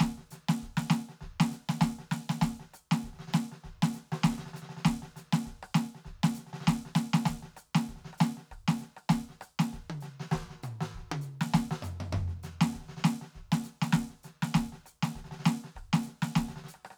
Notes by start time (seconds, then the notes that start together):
0.01 kick, snare
0.19 snare
0.32 snare, hi-hat pedal
0.50 snare
0.63 kick, snare
0.78 snare
0.91 snare, hi-hat pedal
1.10 snare
1.22 kick, snare
1.41 snare
1.45 cross-stick
1.52 snare, hi-hat pedal
1.70 snare
1.82 kick, snare
2.00 snare
2.12 snare, hi-hat pedal
2.30 snare
2.42 kick, snare
2.61 snare
2.75 cross-stick, hi-hat pedal
2.92 snare
3.05 kick, snare
3.14 snare
3.20 snare
3.28 snare
3.34 snare, hi-hat pedal
3.53 snare
3.65 kick, snare
3.83 snare
3.94 snare, hi-hat pedal
4.13 snare
4.24 kick, snare
4.31 snare
4.39 snare
4.47 snare
4.55 snare, hi-hat pedal
4.63 snare
4.70 snare
4.78 snare
4.86 kick, snare
5.03 snare
5.17 snare, hi-hat pedal
5.34 snare
5.47 kick, snare
5.64 cross-stick
5.76 snare, hi-hat pedal
5.96 snare
6.07 kick
6.24 snare
6.36 snare, hi-hat pedal
6.48 snare
6.54 snare
6.61 snare
6.68 kick, snare
6.86 snare
6.96 snare, hi-hat pedal
7.14 snare
7.27 kick, snare
7.44 snare
7.58 cross-stick, hi-hat pedal
7.76 snare
7.89 kick, snare
7.97 snare
8.02 snare
8.06 snare
8.14 cross-stick
8.19 snare, hi-hat pedal
8.38 snare
8.52 kick, cross-stick
8.69 snare
8.79 snare, hi-hat pedal
8.98 cross-stick
9.10 kick, snare
9.30 snare
9.42 cross-stick, hi-hat pedal
9.60 snare
9.74 kick, snare
9.91 high tom
10.02 snare, hi-hat pedal
10.21 snare
10.32 kick, snare
10.51 snare
10.64 hi-hat pedal, mid tom
10.82 snare
10.95 kick, snare
11.13 high tom
11.22 snare, hi-hat pedal
11.42 snare
11.54 kick, snare
11.72 snare
11.83 floor tom, hi-hat pedal
12.01 floor tom
12.14 kick, floor tom
12.29 snare
12.44 snare, hi-hat pedal
12.62 snare
12.74 kick, snare
12.81 snare
12.87 snare
12.89 snare
12.98 snare
13.05 snare, hi-hat pedal
13.22 snare
13.36 kick, snare
13.53 snare
13.58 cross-stick
13.65 snare, hi-hat pedal
13.83 snare
13.94 kick, snare
14.10 snare
14.24 snare, hi-hat pedal
14.43 snare
14.55 kick, snare
14.73 snare
14.87 cross-stick, hi-hat pedal
15.04 snare
15.16 kick, snare
15.25 snare
15.32 snare
15.40 snare
15.46 snare, hi-hat pedal
15.65 snare
15.77 kick, cross-stick
15.94 snare
16.03 hi-hat pedal
16.08 snare
16.23 snare
16.36 kick, snare
16.49 snare
16.57 snare
16.65 snare
16.69 hi-hat pedal
16.75 cross-stick
16.86 cross-stick
16.91 cross-stick
16.94 cross-stick